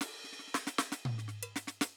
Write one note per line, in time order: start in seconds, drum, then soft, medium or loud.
0.02 snare loud
0.02 ride medium
0.24 snare soft
0.32 snare soft
0.39 snare soft
0.47 snare soft
0.54 snare loud
0.67 snare loud
0.78 snare loud
0.92 snare loud
1.05 mid tom loud
1.18 snare soft
1.28 snare soft
1.43 percussion loud
1.56 snare loud
1.67 snare medium
1.81 snare loud